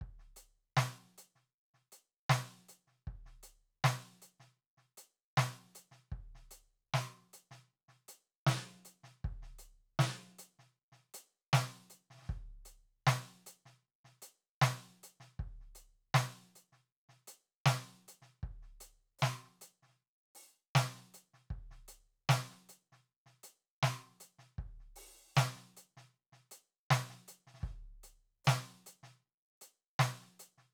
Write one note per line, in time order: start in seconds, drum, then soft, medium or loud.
0.01 kick soft
0.19 snare soft
0.36 closed hi-hat medium
0.77 snare loud
1.18 closed hi-hat medium
1.35 snare soft
1.74 snare soft
1.92 closed hi-hat medium
2.29 snare loud
2.69 closed hi-hat medium
2.87 snare soft
2.91 snare soft
3.07 kick soft
3.26 snare soft
3.43 closed hi-hat medium
3.84 snare loud
4.22 closed hi-hat medium
4.40 snare soft
4.77 snare soft
4.97 closed hi-hat medium
5.37 snare loud
5.75 closed hi-hat medium
5.91 snare soft
6.12 kick soft
6.35 snare soft
6.51 closed hi-hat medium
6.94 snare medium
7.00 closed hi-hat soft
7.33 closed hi-hat medium
7.51 snare soft
7.88 snare soft
8.08 closed hi-hat medium
8.47 snare loud
8.85 closed hi-hat medium
9.04 snare soft
9.24 kick medium
9.42 snare soft
9.59 closed hi-hat soft
9.99 snare loud
10.39 closed hi-hat medium
10.59 snare soft
10.92 snare soft
10.97 snare soft
11.14 closed hi-hat medium
11.53 snare loud
11.90 closed hi-hat soft
12.10 snare soft
12.15 snare soft
12.19 snare soft
12.22 snare soft
12.25 kick medium
12.25 snare soft
12.65 closed hi-hat medium
13.07 snare loud
13.26 snare soft
13.46 closed hi-hat medium
13.66 snare soft
14.04 snare soft
14.22 closed hi-hat medium
14.62 snare loud
15.03 closed hi-hat medium
15.20 snare soft
15.39 kick medium
15.61 snare soft
15.75 closed hi-hat soft
16.14 snare loud
16.55 closed hi-hat soft
16.72 snare soft
17.09 snare soft
17.27 closed hi-hat medium
17.66 snare loud
18.08 closed hi-hat medium
18.22 snare soft
18.43 kick medium
18.62 snare soft
18.67 snare soft
18.80 closed hi-hat medium
19.19 snare loud
19.19 hi-hat pedal medium
19.44 snare soft
19.52 snare soft
19.61 closed hi-hat medium
19.83 snare soft
19.85 snare soft
19.88 snare soft
20.35 open hi-hat medium
20.75 snare loud
20.75 hi-hat pedal medium
20.95 snare soft
21.05 snare soft
21.14 closed hi-hat medium
21.34 snare soft
21.39 snare soft
21.50 kick medium
21.71 snare soft
21.88 open hi-hat medium
22.29 snare loud
22.29 hi-hat pedal medium
22.51 snare soft
22.69 closed hi-hat medium
22.92 snare soft
23.26 snare soft
23.43 closed hi-hat medium
23.83 snare loud
23.93 snare soft
24.20 closed hi-hat medium
24.39 snare soft
24.58 kick medium
24.58 closed hi-hat soft
24.69 kick soft
24.80 snare soft
24.96 open hi-hat medium
25.36 snare loud
25.36 hi-hat pedal medium
25.56 snare soft
25.63 snare soft
25.77 closed hi-hat medium
25.97 snare soft
26.14 closed hi-hat soft
26.32 snare soft
26.51 closed hi-hat medium
26.91 snare loud
27.10 snare soft
27.28 closed hi-hat medium
27.47 snare soft
27.54 snare soft
27.60 kick medium
27.60 snare soft
27.66 snare soft
27.71 kick soft
28.03 closed hi-hat medium
28.45 snare loud
28.45 hi-hat pedal medium
28.86 closed hi-hat medium
29.03 snare soft
29.61 closed hi-hat medium
29.99 snare loud
30.21 snare soft
30.27 snare soft
30.39 closed hi-hat medium
30.58 snare soft